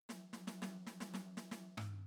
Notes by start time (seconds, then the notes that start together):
0.09 snare, high tom
0.33 snare, high tom
0.47 snare, high tom
0.62 snare, high tom
0.87 snare, high tom
1.01 snare, high tom
1.14 snare, high tom
1.37 snare, high tom
1.52 snare, high tom
1.77 cross-stick, floor tom